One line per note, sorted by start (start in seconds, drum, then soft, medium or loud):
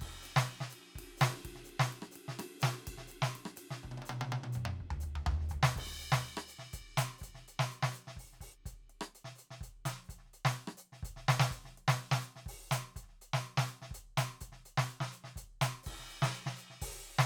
0.01 kick soft
0.01 crash medium
0.06 kick soft
0.06 snare soft
0.10 snare soft
0.22 hi-hat pedal medium
0.22 ride bell medium
0.36 snare loud
0.49 ride soft
0.60 snare medium
0.70 hi-hat pedal medium
0.70 ride medium
0.95 kick soft
0.95 ride medium
1.17 snare loud
1.17 hi-hat pedal medium
1.21 ride loud
1.30 snare soft
1.45 kick soft
1.45 ride medium
1.55 snare soft
1.64 hi-hat pedal medium
1.69 ride soft
1.79 snare loud
1.93 ride medium
2.02 cross-stick medium
2.11 hi-hat pedal medium
2.16 ride medium
2.28 snare medium
2.39 cross-stick medium
2.39 ride loud
2.60 snare loud
2.60 hi-hat pedal medium
2.60 ride medium
2.87 kick soft
2.87 ride bell medium
2.93 kick soft
2.98 snare soft
3.07 hi-hat pedal medium
3.12 ride medium
3.22 snare loud
3.35 ride medium
3.45 cross-stick medium
3.56 hi-hat pedal medium
3.56 ride medium
3.71 snare medium
3.83 kick soft
3.83 high tom medium
3.91 high tom medium
3.98 high tom medium
4.02 hi-hat pedal medium
4.02 high tom medium
4.09 high tom loud
4.14 high tom soft
4.21 high tom loud
4.32 high tom loud
4.44 high tom loud
4.52 hi-hat pedal medium
4.52 mid tom medium
4.57 kick soft
4.65 mid tom loud
4.80 kick soft
4.91 floor tom loud
5.00 kick soft
5.00 hi-hat pedal medium
5.15 floor tom medium
5.26 kick soft
5.26 floor tom loud
5.40 snare soft
5.49 kick soft
5.49 floor tom medium
5.49 hi-hat pedal medium
5.56 kick soft
5.63 snare loud
5.76 kick medium
5.76 crash loud
5.83 kick soft
5.83 cross-stick soft
5.99 closed hi-hat soft
5.99 hi-hat pedal medium
6.12 snare loud
6.25 closed hi-hat soft
6.37 cross-stick medium
6.48 closed hi-hat medium
6.48 hi-hat pedal medium
6.59 snare soft
6.73 closed hi-hat medium
6.73 kick soft
6.97 closed hi-hat loud
6.97 snare loud
7.18 kick soft
7.18 hi-hat pedal medium
7.23 closed hi-hat medium
7.35 snare soft
7.48 closed hi-hat medium
7.59 snare loud
7.71 closed hi-hat soft
7.83 snare medium
7.92 closed hi-hat soft
7.92 hi-hat pedal medium
8.07 snare soft
8.17 open hi-hat medium
8.17 kick soft
8.33 snare soft
8.41 open hi-hat medium
8.41 kick soft
8.66 closed hi-hat medium
8.66 kick soft
8.74 kick soft
8.89 closed hi-hat soft
9.01 cross-stick medium
9.15 closed hi-hat soft
9.25 snare medium
9.35 closed hi-hat soft
9.35 hi-hat pedal soft
9.51 snare soft
9.61 closed hi-hat medium
9.61 kick soft
9.85 closed hi-hat medium
9.85 snare medium
10.04 hi-hat pedal soft
10.09 closed hi-hat medium
10.09 kick soft
10.18 snare soft
10.25 snare soft
10.33 closed hi-hat soft
10.45 snare loud
10.51 hi-hat pedal medium
10.56 closed hi-hat soft
10.67 cross-stick medium
10.77 closed hi-hat soft
10.77 hi-hat pedal medium
10.92 snare soft
11.03 closed hi-hat medium
11.03 kick medium
11.09 kick soft
11.16 snare soft
11.28 snare loud
11.40 snare loud
11.51 closed hi-hat medium
11.51 kick soft
11.56 kick soft
11.65 snare soft
11.78 closed hi-hat soft
11.88 snare loud
12.01 closed hi-hat soft
12.11 snare loud
12.21 closed hi-hat soft
12.21 hi-hat pedal medium
12.36 snare soft
12.46 open hi-hat medium
12.46 kick soft
12.54 kick soft
12.69 closed hi-hat loud
12.69 snare medium
12.69 hi-hat pedal soft
12.96 closed hi-hat medium
12.96 kick soft
13.02 snare soft
13.08 snare soft
13.14 snare soft
13.21 closed hi-hat soft
13.33 snare medium
13.46 closed hi-hat soft
13.57 snare loud
13.67 closed hi-hat soft
13.67 hi-hat pedal medium
13.82 snare soft
13.91 closed hi-hat medium
13.91 kick soft
14.17 closed hi-hat loud
14.17 snare loud
14.41 closed hi-hat medium
14.41 kick soft
14.52 snare soft
14.65 closed hi-hat soft
14.78 snare loud
14.90 closed hi-hat soft
15.00 snare medium
15.12 closed hi-hat soft
15.12 hi-hat pedal medium
15.24 snare soft
15.36 closed hi-hat medium
15.36 kick soft
15.61 closed hi-hat loud
15.61 snare loud
15.83 kick soft
15.83 hi-hat pedal medium
15.83 crash medium
15.92 kick soft
15.92 snare soft
15.96 kick soft
16.00 snare soft
16.10 closed hi-hat soft
16.22 snare loud
16.28 hi-hat pedal soft
16.34 closed hi-hat soft
16.46 snare medium
16.56 closed hi-hat soft
16.56 hi-hat pedal medium
16.70 snare soft
16.82 open hi-hat loud
16.82 kick soft
16.88 kick soft
16.88 snare soft
17.07 open hi-hat soft
17.19 snare loud